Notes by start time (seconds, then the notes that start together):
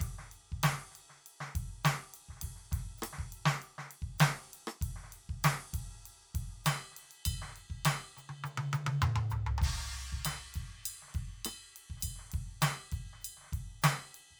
0.01 kick, ride
0.19 snare
0.32 ride
0.52 kick
0.58 kick
0.64 snare, hi-hat pedal, ride
0.73 snare
0.92 snare
0.96 ride
1.10 snare
1.27 ride
1.41 snare
1.55 kick, ride
1.62 kick
1.84 snare, hi-hat pedal, ride
2.14 ride
2.29 kick, snare
2.37 snare
2.41 kick, snare, hi-hat pedal, ride
2.54 kick, snare
2.60 snare
2.72 kick, snare, ride
2.80 kick
2.98 hi-hat pedal
3.02 cross-stick, ride
3.13 snare
3.19 kick
3.29 hi-hat pedal, ride
3.46 snare
3.60 hi-hat pedal, ride
3.79 snare
3.91 ride
4.02 kick
4.19 snare, hi-hat pedal, ride
4.32 snare
4.54 ride
4.67 cross-stick
4.80 kick, hi-hat pedal, ride
4.89 kick
4.96 snare
5.04 snare
5.08 snare
5.13 ride
5.29 kick
5.44 snare, hi-hat pedal, ride
5.74 kick, ride
5.80 kick
6.06 ride
6.35 kick, ride
6.42 kick
6.65 snare, hi-hat pedal, ride bell
6.92 snare
6.97 snare, ride
7.03 snare
7.11 ride
7.26 kick, ride bell
7.32 kick
7.38 kick, snare
7.50 snare
7.56 ride
7.70 kick
7.85 snare, hi-hat pedal, ride bell
8.17 hi-hat pedal, high tom
8.29 high tom
8.44 hi-hat pedal, high tom
8.58 high tom
8.73 hi-hat pedal, high tom
8.87 high tom
9.02 hi-hat pedal, mid tom
9.16 mid tom
9.30 floor tom, hi-hat pedal
9.47 floor tom
9.58 kick, floor tom
9.62 hi-hat pedal, crash
9.76 kick
10.13 kick
10.25 snare, hi-hat pedal, ride bell
10.54 kick, ride
10.62 kick
10.84 hi-hat pedal, ride bell
11.03 snare
11.06 snare
11.08 snare
11.13 kick, snare, ride
11.22 kick
11.45 cross-stick, hi-hat pedal, ride bell
11.76 ride
11.90 kick
11.97 snare, hi-hat pedal
12.03 kick, ride bell
12.16 snare
12.19 snare
12.29 snare, ride
12.34 kick
12.61 snare, hi-hat pedal, ride bell
12.92 kick, ride
12.98 kick
13.13 snare
13.21 hi-hat pedal, ride bell
13.37 snare
13.41 snare
13.45 snare
13.47 snare
13.53 kick, ride
13.60 kick
13.82 snare, hi-hat pedal, ride bell
13.96 snare
14.15 ride
14.31 kick